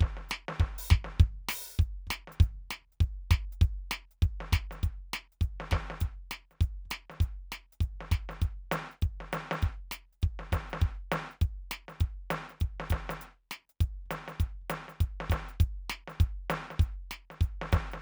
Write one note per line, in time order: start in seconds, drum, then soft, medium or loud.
0.01 kick medium
0.01 snare soft
0.17 snare soft
0.29 snare loud
0.29 hi-hat pedal medium
0.49 snare medium
0.60 kick medium
0.60 snare soft
0.79 open hi-hat loud
0.89 kick loud
0.89 snare loud
0.89 hi-hat pedal medium
1.05 snare soft
1.20 kick loud
1.20 closed hi-hat soft
1.49 open hi-hat loud
1.49 snare loud
1.75 hi-hat pedal soft
1.79 kick medium
1.79 closed hi-hat soft
2.07 kick soft
2.07 snare loud
2.12 closed hi-hat loud
2.28 snare soft
2.32 closed hi-hat soft
2.40 closed hi-hat medium
2.40 kick loud
2.71 closed hi-hat loud
2.71 snare loud
2.92 closed hi-hat soft
3.01 closed hi-hat soft
3.01 kick medium
3.31 closed hi-hat medium
3.31 kick medium
3.31 snare loud
3.53 closed hi-hat soft
3.62 closed hi-hat medium
3.62 kick loud
3.91 closed hi-hat loud
3.91 snare loud
4.11 closed hi-hat soft
4.22 closed hi-hat soft
4.22 kick medium
4.41 snare soft
4.53 closed hi-hat loud
4.53 kick medium
4.53 snare loud
4.71 closed hi-hat soft
4.71 snare soft
4.76 snare soft
4.83 closed hi-hat medium
4.83 kick medium
5.14 closed hi-hat medium
5.14 snare loud
5.32 closed hi-hat soft
5.41 closed hi-hat medium
5.41 kick medium
5.60 snare medium
5.71 kick medium
5.71 snare medium
5.73 snare medium
5.90 snare medium
6.01 closed hi-hat medium
6.01 kick medium
6.31 closed hi-hat medium
6.31 snare loud
6.51 snare soft
6.51 closed hi-hat soft
6.61 closed hi-hat medium
6.61 kick medium
6.86 kick soft
6.91 closed hi-hat loud
6.91 snare loud
7.10 snare soft
7.10 closed hi-hat soft
7.15 snare soft
7.21 closed hi-hat medium
7.21 kick medium
7.52 closed hi-hat medium
7.52 snare medium
7.73 closed hi-hat soft
7.81 closed hi-hat medium
7.81 kick medium
8.01 snare soft
8.12 closed hi-hat loud
8.12 kick medium
8.12 snare medium
8.29 snare soft
8.29 closed hi-hat soft
8.42 closed hi-hat medium
8.42 kick medium
8.72 closed hi-hat loud
8.72 snare loud
8.91 closed hi-hat soft
9.02 closed hi-hat medium
9.02 kick medium
9.21 snare soft
9.33 closed hi-hat medium
9.33 snare medium
9.52 snare medium
9.52 closed hi-hat soft
9.62 closed hi-hat medium
9.62 kick medium
9.92 closed hi-hat loud
9.92 snare medium
10.13 closed hi-hat soft
10.22 closed hi-hat soft
10.22 kick medium
10.39 snare soft
10.53 closed hi-hat medium
10.53 kick medium
10.53 snare medium
10.70 snare medium
10.70 closed hi-hat soft
10.82 kick medium
10.82 closed hi-hat soft
11.12 closed hi-hat medium
11.12 snare loud
11.31 closed hi-hat soft
11.42 closed hi-hat medium
11.42 kick medium
11.71 closed hi-hat loud
11.71 snare loud
11.89 snare soft
11.89 closed hi-hat soft
12.00 closed hi-hat medium
12.00 kick medium
12.31 closed hi-hat medium
12.31 snare loud
12.50 snare soft
12.50 closed hi-hat soft
12.61 closed hi-hat medium
12.61 kick medium
12.80 snare medium
12.90 kick medium
12.90 snare medium
12.90 closed hi-hat loud
13.10 snare medium
13.10 closed hi-hat medium
13.21 closed hi-hat medium
13.51 closed hi-hat medium
13.51 snare medium
13.70 closed hi-hat soft
13.81 closed hi-hat medium
13.81 kick medium
14.06 kick soft
14.11 snare medium
14.11 closed hi-hat medium
14.28 snare medium
14.28 closed hi-hat soft
14.40 closed hi-hat medium
14.40 kick medium
14.62 kick soft
14.70 closed hi-hat loud
14.70 snare medium
14.89 snare soft
14.89 closed hi-hat soft
15.01 closed hi-hat medium
15.01 kick medium
15.21 snare medium
15.30 closed hi-hat medium
15.30 kick medium
15.30 snare medium
15.49 closed hi-hat soft
15.60 closed hi-hat medium
15.60 kick medium
15.90 closed hi-hat medium
15.90 snare loud
16.08 snare soft
16.08 closed hi-hat soft
16.20 closed hi-hat medium
16.20 kick medium
16.50 closed hi-hat medium
16.50 snare loud
16.71 snare soft
16.71 closed hi-hat soft
16.80 closed hi-hat medium
16.80 kick medium
17.11 closed hi-hat medium
17.11 snare medium
17.31 snare soft
17.31 closed hi-hat soft
17.41 closed hi-hat medium
17.41 kick medium
17.62 snare medium
17.73 closed hi-hat medium
17.73 kick medium
17.73 snare medium
17.92 snare medium
17.92 closed hi-hat soft